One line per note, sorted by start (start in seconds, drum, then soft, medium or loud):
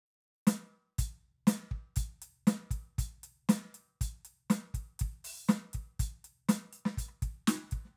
0.47 closed hi-hat loud
0.47 snare loud
0.99 closed hi-hat loud
0.99 kick medium
1.09 kick soft
1.48 closed hi-hat loud
1.48 snare loud
1.72 kick medium
1.96 closed hi-hat loud
1.96 kick medium
2.22 closed hi-hat medium
2.47 closed hi-hat loud
2.47 snare loud
2.71 kick medium
2.71 closed hi-hat medium
2.99 closed hi-hat loud
2.99 kick medium
3.24 closed hi-hat medium
3.49 closed hi-hat loud
3.49 snare loud
3.75 closed hi-hat medium
4.01 closed hi-hat loud
4.01 kick medium
4.25 closed hi-hat medium
4.50 closed hi-hat loud
4.50 snare loud
4.75 kick medium
4.75 closed hi-hat medium
5.00 kick medium
5.00 closed hi-hat medium
5.25 open hi-hat loud
5.48 closed hi-hat medium
5.48 snare loud
5.48 hi-hat pedal medium
5.74 kick soft
5.74 closed hi-hat medium
6.00 closed hi-hat loud
6.00 kick medium
6.25 closed hi-hat medium
6.49 closed hi-hat loud
6.49 snare loud
6.73 open hi-hat medium
6.86 snare medium
6.98 closed hi-hat medium
6.98 kick medium
7.09 cross-stick soft
7.23 kick medium
7.23 closed hi-hat medium
7.48 closed hi-hat loud
7.48 snare loud
7.72 kick medium
7.72 closed hi-hat medium
7.85 snare soft